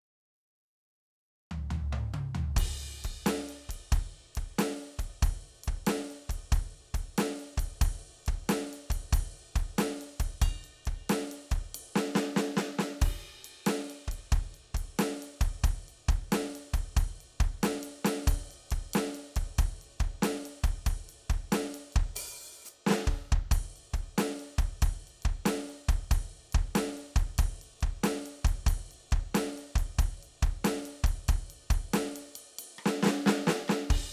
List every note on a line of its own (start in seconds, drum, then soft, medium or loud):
1.51 floor tom loud
1.71 floor tom loud
1.93 mid tom loud
2.14 high tom loud
2.35 floor tom loud
2.56 kick loud
2.56 ride loud
2.56 crash loud
2.81 ride soft
3.04 kick medium
3.04 ride medium
3.26 snare loud
3.26 ride loud
3.49 ride medium
3.69 kick medium
3.69 ride medium
3.92 kick loud
3.92 ride medium
4.35 kick medium
4.35 ride medium
4.59 snare loud
4.59 ride loud
4.82 ride soft
4.99 kick medium
4.99 ride medium
5.22 kick loud
5.22 ride loud
5.64 kick medium
5.64 ride medium
5.87 snare loud
5.87 ride loud
6.10 ride soft
6.29 kick medium
6.29 ride medium
6.52 kick loud
6.52 ride medium
6.94 kick medium
6.94 ride medium
7.18 snare loud
7.18 ride loud
7.39 ride soft
7.57 kick loud
7.57 ride loud
7.81 kick loud
7.81 ride loud
8.26 kick loud
8.26 ride medium
8.49 snare loud
8.49 ride loud
8.73 ride medium
8.90 kick medium
8.90 ride loud
9.13 kick loud
9.13 ride loud
9.37 ride soft
9.56 kick loud
9.56 ride medium
9.78 snare loud
9.78 ride loud
10.01 ride medium
10.20 kick medium
10.20 ride loud
10.42 kick loud
10.42 ride bell loud
10.64 ride soft
10.86 kick medium
10.86 ride medium
11.10 snare loud
11.10 ride loud
11.32 ride medium
11.51 kick loud
11.51 ride medium
11.75 ride loud
11.96 snare loud
12.15 snare loud
12.36 snare loud
12.57 snare loud
12.79 snare loud
13.02 kick loud
13.02 crash loud
13.45 ride medium
13.66 snare loud
13.66 ride loud
13.90 ride medium
14.08 kick medium
14.08 ride medium
14.32 kick loud
14.32 ride medium
14.54 ride soft
14.74 kick medium
14.74 ride medium
14.99 snare loud
14.99 ride loud
15.22 ride medium
15.41 kick loud
15.41 ride medium
15.64 kick loud
15.64 ride loud
15.88 ride soft
16.09 kick loud
16.09 ride medium
16.32 snare loud
16.32 ride loud
16.55 ride medium
16.74 kick loud
16.74 ride medium
16.97 kick loud
16.97 ride loud
17.21 ride soft
17.40 kick loud
17.40 ride medium
17.63 snare loud
17.63 ride loud
17.83 ride medium
18.05 snare loud
18.05 ride loud
18.27 kick loud
18.27 ride loud
18.51 ride soft
18.71 kick medium
18.71 ride medium
18.94 snare loud
18.94 ride loud
19.15 ride medium
19.36 kick loud
19.36 ride medium
19.59 kick loud
19.59 ride loud
19.81 ride soft
20.00 kick loud
20.00 ride soft
20.22 snare loud
20.22 ride loud
20.46 ride medium
20.64 kick loud
20.64 ride medium
20.86 kick loud
20.86 ride loud
21.09 ride medium
21.30 kick loud
21.30 ride medium
21.52 snare loud
21.52 ride loud
21.74 ride medium
21.93 kick loud
21.93 ride soft
22.16 open hi-hat loud
22.16 ride loud
22.65 hi-hat pedal loud
22.87 snare loud
22.90 snare loud
23.07 kick loud
23.32 kick loud
23.51 kick loud
23.51 ride loud
23.76 ride soft
23.94 kick medium
23.94 ride medium
24.18 snare loud
24.18 ride loud
24.40 ride soft
24.58 kick loud
24.58 ride medium
24.82 kick loud
24.82 ride loud
25.07 ride soft
25.22 kick loud
25.22 ride soft
25.46 snare loud
25.46 ride loud
25.69 ride soft
25.89 kick loud
25.89 ride medium
26.11 kick loud
26.11 ride loud
26.53 kick loud
26.53 ride medium
26.75 snare loud
26.75 ride loud
26.97 ride soft
27.16 kick loud
27.16 ride medium
27.38 kick loud
27.38 ride loud
27.62 ride soft
27.81 kick loud
27.81 ride soft
28.04 snare loud
28.04 ride loud
28.26 ride medium
28.45 kick loud
28.45 ride medium
28.66 kick loud
28.66 ride loud
28.91 ride soft
29.11 kick loud
29.11 ride soft
29.35 snare loud
29.35 ride loud
29.58 ride soft
29.76 kick loud
29.76 ride medium
29.99 kick loud
29.99 ride loud
30.23 ride soft
30.43 kick loud
30.43 ride medium
30.64 snare loud
30.64 ride loud
30.85 ride medium
31.04 kick loud
31.04 ride medium
31.28 kick loud
31.28 ride loud
31.50 ride medium
31.70 kick loud
31.70 ride loud
31.93 snare loud
31.93 ride loud
32.16 ride medium
32.35 ride loud
32.59 ride loud
32.78 cross-stick medium
32.86 snare loud
33.03 snare loud
33.06 snare loud
33.26 snare loud
33.47 snare loud
33.68 cross-stick medium
33.68 snare loud
33.90 kick loud
33.90 crash loud